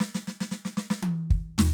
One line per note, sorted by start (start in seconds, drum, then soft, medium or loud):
0.00 snare medium
0.15 snare medium
0.28 snare medium
0.41 snare medium
0.51 snare medium
0.65 snare medium
0.77 snare medium
0.90 snare medium
1.03 high tom loud
1.30 kick medium
1.58 snare loud
1.58 floor tom loud